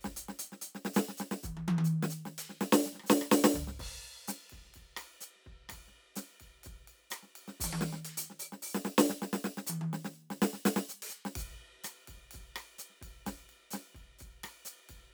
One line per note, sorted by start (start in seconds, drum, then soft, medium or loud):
0.01 snare medium
0.01 hi-hat pedal soft
0.06 kick soft
0.11 kick soft
0.17 closed hi-hat medium
0.29 snare medium
0.39 open hi-hat loud
0.52 snare soft
0.62 open hi-hat medium
0.75 snare soft
0.85 snare medium
0.94 snare loud
0.94 hi-hat pedal medium
1.09 snare soft
1.18 snare medium
1.18 hi-hat pedal medium
1.32 snare medium
1.43 kick soft
1.43 hi-hat pedal medium
1.43 high tom medium
1.51 kick soft
1.57 high tom medium
1.68 high tom loud
1.79 high tom medium
1.85 hi-hat pedal medium
2.03 snare medium
2.10 hi-hat pedal medium
2.26 snare medium
2.38 closed hi-hat medium
2.38 hi-hat pedal medium
2.50 snare soft
2.61 snare loud
2.73 snare loud
2.84 snare soft
2.84 hi-hat pedal medium
2.93 snare soft
2.95 snare soft
3.00 cross-stick soft
3.04 snare soft
3.04 hi-hat pedal medium
3.10 snare loud
3.22 cross-stick medium
3.29 kick soft
3.29 snare loud
3.29 hi-hat pedal medium
3.44 snare loud
3.54 kick soft
3.54 floor tom medium
3.60 kick soft
3.68 snare soft
3.80 kick soft
3.80 crash medium
3.86 kick soft
3.91 snare soft
4.28 snare medium
4.28 hi-hat pedal loud
4.28 ride medium
4.50 kick soft
4.50 snare soft
4.50 ride soft
4.58 kick soft
4.58 snare soft
4.65 snare soft
4.69 snare soft
4.74 kick soft
4.74 hi-hat pedal soft
4.74 ride soft
4.81 kick soft
4.97 cross-stick medium
4.97 ride medium
5.21 hi-hat pedal medium
5.36 snare soft
5.45 kick soft
5.45 ride soft
5.52 kick soft
5.69 kick soft
5.69 cross-stick medium
5.69 hi-hat pedal soft
5.69 ride medium
5.77 kick soft
5.88 snare soft
6.16 snare medium
6.16 hi-hat pedal medium
6.16 ride medium
6.40 kick soft
6.40 ride soft
6.64 kick soft
6.64 hi-hat pedal soft
6.64 ride medium
6.88 ride medium
7.11 cross-stick medium
7.11 hi-hat pedal medium
7.11 ride medium
7.23 snare soft
7.36 ride medium
7.48 snare soft
7.60 kick soft
7.60 hi-hat pedal loud
7.64 kick soft
7.64 high tom medium
7.69 kick soft
7.73 high tom medium
7.81 snare medium
7.93 snare soft
8.05 closed hi-hat medium
8.18 closed hi-hat loud
8.30 snare soft
8.40 open hi-hat loud
8.40 hi-hat pedal soft
8.53 snare soft
8.63 open hi-hat loud
8.70 hi-hat pedal soft
8.75 snare medium
8.85 snare medium
8.97 kick soft
8.97 snare loud
8.97 hi-hat pedal medium
9.10 snare medium
9.22 snare medium
9.33 snare medium
9.45 snare medium
9.58 snare medium
9.67 hi-hat pedal loud
9.67 high tom medium
9.81 high tom medium
9.93 snare medium
10.05 snare medium
10.13 hi-hat pedal soft
10.31 snare medium
10.42 snare loud
10.54 snare soft
10.66 snare loud
10.66 hi-hat pedal loud
10.76 snare loud
10.89 hi-hat pedal medium
11.03 closed hi-hat medium
11.10 hi-hat pedal medium
11.25 snare medium
11.36 kick medium
11.36 hi-hat pedal medium
11.36 ride loud
11.47 kick soft
11.84 cross-stick medium
11.84 hi-hat pedal loud
11.84 ride medium
12.08 kick soft
12.08 ride medium
12.14 kick soft
12.14 snare soft
12.31 kick soft
12.31 hi-hat pedal soft
12.31 ride medium
12.40 kick soft
12.56 cross-stick medium
12.56 ride medium
12.79 hi-hat pedal medium
12.79 ride medium
12.90 snare soft
13.02 kick soft
13.02 ride medium
13.07 kick soft
13.26 kick soft
13.26 snare medium
13.26 hi-hat pedal soft
13.26 ride medium
13.32 kick soft
13.50 ride soft
13.71 snare medium
13.71 hi-hat pedal medium
13.71 ride medium
13.94 kick soft
13.94 snare soft
13.94 ride soft
14.00 kick soft
14.06 snare soft
14.19 kick soft
14.19 hi-hat pedal soft
14.19 ride soft
14.27 kick soft
14.44 cross-stick medium
14.44 ride medium
14.65 hi-hat pedal medium
14.65 ride medium
14.89 kick soft
14.89 ride medium
14.95 kick soft
14.95 snare soft